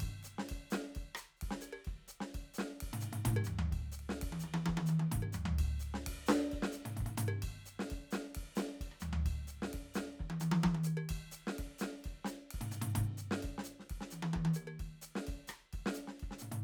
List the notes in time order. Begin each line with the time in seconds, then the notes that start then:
0.01 kick, ride bell
0.24 hi-hat pedal, ride
0.39 snare
0.49 kick, ride bell
0.71 snare, hi-hat pedal
0.96 kick, ride bell
1.15 cross-stick, hi-hat pedal
1.37 hi-hat pedal
1.42 kick, ride
1.51 kick, snare
1.62 hi-hat pedal, percussion
1.73 percussion
1.85 kick, ride bell
2.09 hi-hat pedal
2.21 snare
2.35 kick, ride bell
2.54 hi-hat pedal
2.59 snare
2.81 kick, ride
2.94 mid tom
3.01 hi-hat pedal, mid tom
3.13 mid tom
3.26 kick, mid tom
3.33 kick, percussion
3.45 floor tom, hi-hat pedal
3.59 floor tom
3.72 kick, ride bell
3.79 kick
3.92 hi-hat pedal
4.00 ride
4.10 snare
4.22 kick, ride
4.32 kick, high tom
4.40 hi-hat pedal
4.44 high tom
4.54 high tom
4.66 kick, high tom
4.75 kick, high tom
4.87 hi-hat pedal, high tom
5.00 high tom
5.12 kick, mid tom
5.23 percussion
5.33 floor tom, hi-hat pedal
5.46 floor tom
5.59 kick, ride bell
5.66 kick
5.69 kick
5.80 hi-hat pedal, ride
5.95 snare
6.07 kick, ride
6.15 kick
6.27 snare, hi-hat pedal
6.52 kick, ride bell
6.63 snare
6.73 hi-hat pedal, ride
6.86 mid tom
6.97 kick, mid tom
7.07 kick, mid tom
7.18 hi-hat pedal, mid tom
7.29 percussion
7.43 kick, ride bell
7.52 kick
7.65 hi-hat pedal, ride
7.80 snare
7.91 kick, ride bell
8.11 snare, hi-hat pedal
8.35 kick, ride
8.56 snare, hi-hat pedal
8.81 kick, ride bell
8.92 cross-stick
9.01 floor tom, hi-hat pedal
9.13 floor tom
9.26 kick, ride bell
9.33 kick
9.48 hi-hat pedal, ride
9.63 snare
9.74 kick, ride
9.95 snare, hi-hat pedal
10.20 kick, high tom
10.30 high tom
10.41 hi-hat pedal, high tom
10.52 high tom
10.60 hi-hat pedal
10.64 kick, high tom
10.75 high tom
10.84 hi-hat pedal, percussion
10.98 percussion
11.10 kick, ride bell
11.19 kick
11.32 hi-hat pedal, ride
11.48 snare
11.53 hi-hat pedal
11.59 kick, ride
11.79 snare, hi-hat pedal
12.00 hi-hat pedal
12.05 kick, ride bell
12.25 snare, hi-hat pedal
12.51 kick, ride
12.62 mid tom
12.72 hi-hat pedal, mid tom
12.82 mid tom
12.96 kick, mid tom
13.18 hi-hat pedal
13.32 snare
13.43 kick, ride bell
13.59 snare
13.65 hi-hat pedal
13.80 snare
13.90 kick, ride
14.01 snare
14.11 hi-hat pedal, high tom
14.23 high tom
14.34 kick, high tom
14.44 kick, high tom
14.54 hi-hat pedal, percussion
14.68 percussion
14.80 kick, ride bell
15.02 hi-hat pedal, ride
15.16 snare
15.27 kick, ride bell
15.48 cross-stick, hi-hat pedal
15.73 kick, ride bell
15.87 snare
15.95 hi-hat pedal, ride
16.08 snare
16.20 kick, ride bell
16.32 snare
16.39 hi-hat pedal, mid tom
16.52 mid tom